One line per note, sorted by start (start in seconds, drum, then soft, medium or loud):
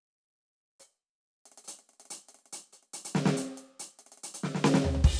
0.80 hi-hat pedal medium
1.46 closed hi-hat medium
1.52 closed hi-hat soft
1.57 closed hi-hat medium
1.64 closed hi-hat soft
1.68 closed hi-hat loud
1.79 closed hi-hat soft
1.89 closed hi-hat soft
1.93 closed hi-hat soft
2.00 closed hi-hat medium
2.05 closed hi-hat soft
2.10 closed hi-hat loud
2.28 closed hi-hat medium
2.34 closed hi-hat soft
2.39 closed hi-hat soft
2.46 closed hi-hat soft
2.53 closed hi-hat loud
2.73 closed hi-hat medium
2.83 closed hi-hat soft
2.93 closed hi-hat loud
3.05 closed hi-hat loud
3.15 snare loud
3.26 snare loud
3.37 closed hi-hat loud
3.57 closed hi-hat medium
3.80 closed hi-hat loud
3.99 closed hi-hat medium
4.06 closed hi-hat soft
4.12 closed hi-hat medium
4.17 closed hi-hat soft
4.23 closed hi-hat loud
4.34 closed hi-hat loud
4.43 snare medium
4.55 snare medium
4.64 snare loud
4.74 snare loud
4.84 floor tom loud
4.95 floor tom loud
5.04 kick loud
5.04 crash loud